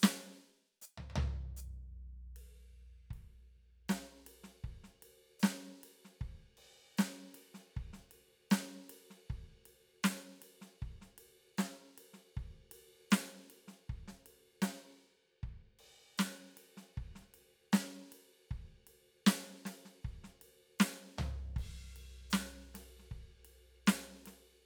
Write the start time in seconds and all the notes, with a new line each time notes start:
0.01 snare, hi-hat pedal
0.04 snare
0.82 hi-hat pedal
0.98 floor tom
1.11 floor tom
1.17 floor tom
1.57 hi-hat pedal
2.37 crash
3.11 kick, ride
3.89 snare, hi-hat pedal
4.27 ride
4.44 snare
4.65 kick
4.84 snare
4.91 snare
5.03 ride
5.40 snare, hi-hat pedal
5.84 ride
6.05 snare
6.22 kick
6.58 ride
6.98 snare, hi-hat pedal
7.35 ride
7.55 snare
7.77 kick
7.94 snare
8.12 ride
8.51 snare, hi-hat pedal
8.90 ride
9.11 snare
9.31 kick
9.66 ride
10.04 snare, hi-hat pedal
10.43 ride
10.62 snare
10.83 kick
11.02 snare
11.19 ride
11.58 snare, hi-hat pedal
11.99 ride
12.14 snare
12.37 kick
12.72 ride
13.11 snare, hi-hat pedal
13.51 ride
13.68 snare
13.90 kick
14.08 snare
14.27 ride
14.63 snare, hi-hat pedal, ride bell
15.44 kick
15.80 ride
16.18 snare, hi-hat pedal
16.35 snare
16.58 ride
16.78 snare
16.98 kick
17.16 snare
17.23 snare
17.35 ride
17.73 snare, hi-hat pedal
18.13 ride
18.52 kick
18.88 ride
19.27 snare, hi-hat pedal
19.66 snare, ride
19.86 snare
20.05 kick
20.25 snare
20.42 ride
20.80 snare, hi-hat pedal
21.19 snare, floor tom
21.57 kick, crash
21.97 ride
22.31 snare, hi-hat pedal
22.42 snare
22.75 snare, ride
23.00 snare
23.12 kick
23.46 ride
23.87 snare, hi-hat pedal
24.27 snare, ride